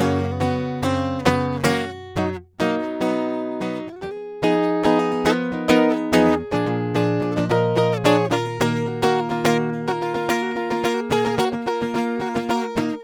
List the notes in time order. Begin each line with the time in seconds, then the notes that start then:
0.00 F#2 C#3 F#3 A#3 C#4 F#4
0.42 F#2 C#3 B3 C#4 F#4
0.84 F#2 C#3 C4 D#4 F#4
1.26 F#2 C#3 B3 C#4 F#4
1.65 F#2 C#3 A#3 C#4 F#4
1.93 F#4
2.17 F#2 B2 F#3 D#4 F#4
2.61 B2 F#3 A#3 D#4 F#4
2.82 B3
3.02 B2 F#3 B3 D#4
3.62 B2 F#3 B3 D#4
4.12 G#4
4.44 F3 B3 D#4 G#4
4.85 F3 B3 D#4 G#4
5.00 B3 D#4
5.14 B3
5.27 F3 B3 D#4 A4
5.53 F3 B3 D#4 A#4
5.70 F3 B3 D#4 A#4 D#5
5.96 D#4
6.14 F3 B3 D#4 G#4 C#5
6.39 G#4
6.54 A#2 F3 D4 G#4
6.68 A#2 F3
6.96 A#2 F3 D4 G#4
7.21 A#2 F3 D4
7.38 A#2 F3 D4 D#5
7.51 A#2 F3 A#4 D#5
7.77 A#2 F3 A#4 D#5
8.06 A#2 F3 D4 G#4 C#5
8.31 A#2 D#3 D4 F4 A#4
8.62 A#2 D#3 A#3 F#4 A#4
8.87 D#3 A#3 F#4
9.04 A#2 D#3 A#3 F#4 A#4
9.30 D#3 A#3 F4 A#4
9.46 D#3 A#3 F4 A#4
9.59 F#4
9.71 F4
9.76 A#4
9.89 D#3 A#3 F4 A#4
10.03 A#3 F4 A#4
10.16 D#3 A#3 F4 A#4
10.31 A#3 F4 A#4
10.44 F#4
10.57 A#3 F4 A#4
10.72 D#3 A#3 F4 A#4
10.85 D#3 A#3 F4 A#4
10.96 F#4
11.06 G#4
11.11 A#2 D#3 A#3 G#4 A#4
11.26 D#3 A#3 G#4 A#4
11.39 D#3 A#3 F#4 A#4
11.55 D#3 A#3
11.68 A#3 F4 A#4
11.82 D#3 A#3 F4
11.95 D#3 A#3 F4 A#4
12.21 D#3 A#3 F#4 A#4
12.36 D#3 A#3 F4 A#4
12.51 A#3 F#4 A#4
12.78 A#2 D#3 D#4 F4